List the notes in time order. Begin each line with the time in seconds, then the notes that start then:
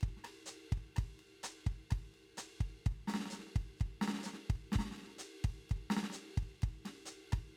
0.01 kick, ride
0.08 kick
0.17 snare
0.24 cross-stick, ride
0.46 hi-hat pedal, ride
0.72 kick, ride
0.77 kick
0.96 kick, cross-stick, ride
1.03 kick
1.19 ride
1.43 cross-stick, snare, hi-hat pedal, ride
1.66 kick, ride
1.72 kick
1.91 kick, cross-stick, ride
1.97 kick
2.14 ride
2.37 cross-stick, snare, hi-hat pedal, ride
2.61 kick, ride
2.86 kick, ride
2.92 kick
3.08 snare, ride
3.14 snare
3.19 snare
3.26 snare
3.30 snare, hi-hat pedal, ride
3.39 snare
3.47 snare
3.53 kick, snare, ride
3.57 kick, snare
3.61 snare
3.64 snare
3.68 snare
3.77 hi-hat pedal, ride
3.81 kick
3.86 kick
4.01 snare, ride
4.08 snare
4.13 snare
4.19 snare
4.23 snare, hi-hat pedal, ride
4.33 snare
4.38 snare
4.43 snare
4.47 kick, snare, ride
4.55 kick
4.72 kick, snare, ride
4.79 kick, snare
4.85 snare
4.91 snare
4.96 snare, ride
5.02 snare
5.07 snare
5.13 snare
5.16 snare, hi-hat pedal
5.20 snare, ride
5.44 kick, ride
5.50 kick, snare
5.70 kick, ride
5.76 kick
5.90 snare, ride
5.97 snare
6.03 snare
6.10 snare, hi-hat pedal
6.14 snare, ride
6.22 snare
6.27 snare
6.32 snare
6.37 kick, ride
6.43 kick
6.62 kick, ride
6.68 kick
6.85 snare, ride
7.06 hi-hat pedal, ride
7.32 kick, cross-stick, snare, ride
7.38 kick